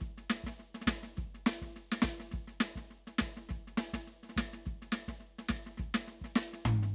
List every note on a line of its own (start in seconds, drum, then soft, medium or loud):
0.01 kick soft
0.01 snare soft
0.11 kick soft
0.18 snare soft
0.30 snare loud
0.30 hi-hat pedal medium
0.44 kick soft
0.44 snare medium
0.50 kick soft
0.60 snare soft
0.75 snare medium
0.82 snare soft
0.88 kick soft
0.88 snare loud
0.88 hi-hat pedal medium
1.04 snare soft
1.17 kick soft
1.17 snare soft
1.25 kick soft
1.35 snare soft
1.46 snare loud
1.46 hi-hat pedal medium
1.62 kick soft
1.62 snare soft
1.76 snare soft
1.92 snare medium
2.03 kick soft
2.03 snare loud
2.03 hi-hat pedal medium
2.13 kick soft
2.20 snare soft
2.32 kick soft
2.32 snare soft
2.41 kick soft
2.48 snare soft
2.61 snare loud
2.61 hi-hat pedal medium
2.76 kick soft
2.76 snare soft
2.91 snare soft
3.08 snare soft
3.19 kick soft
3.19 snare loud
3.19 hi-hat pedal medium
3.37 snare soft
3.49 kick soft
3.49 snare soft
3.58 kick soft
3.68 snare soft
3.78 snare loud
3.78 hi-hat pedal medium
3.94 kick soft
3.94 snare medium
4.08 snare soft
4.12 snare soft
4.17 snare soft
4.23 snare soft
4.30 snare soft
4.36 kick soft
4.36 snare loud
4.36 hi-hat pedal medium
4.54 snare soft
4.66 kick soft
4.66 snare soft
4.74 kick soft
4.82 snare soft
4.93 snare loud
4.93 hi-hat pedal medium
5.09 kick soft
5.09 snare medium
5.21 snare soft
5.39 snare medium
5.49 kick soft
5.49 snare medium
5.49 hi-hat pedal medium
5.67 snare soft
5.78 kick soft
5.78 snare soft
5.87 kick soft
5.95 snare loud
6.06 snare soft
6.06 hi-hat pedal medium
6.22 kick soft
6.22 snare soft
6.36 snare loud
6.54 snare soft
6.65 kick soft
6.65 hi-hat pedal medium
6.65 floor tom loud
6.83 snare soft